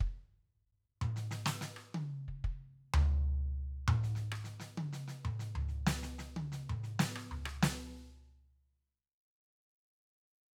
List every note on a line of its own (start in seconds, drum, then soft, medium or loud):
0.01 kick medium
0.08 kick soft
0.12 kick soft
1.02 mid tom loud
1.16 snare soft
1.31 snare medium
1.46 snare loud
1.62 snare medium
1.77 cross-stick medium
1.95 high tom medium
2.28 kick soft
2.45 kick soft
2.94 floor tom loud
3.88 mid tom loud
4.04 snare soft
4.16 snare soft
4.32 cross-stick medium
4.45 snare soft
4.60 snare medium
4.78 high tom medium
4.93 snare soft
5.08 snare soft
5.25 mid tom loud
5.40 snare soft
5.56 floor tom loud
5.69 snare soft
5.87 snare loud
6.03 snare medium
6.19 snare medium
6.37 high tom medium
6.52 snare soft
6.70 mid tom loud
6.84 snare soft
7.00 snare loud
7.16 cross-stick medium
7.32 floor tom medium
7.46 cross-stick medium
7.63 snare loud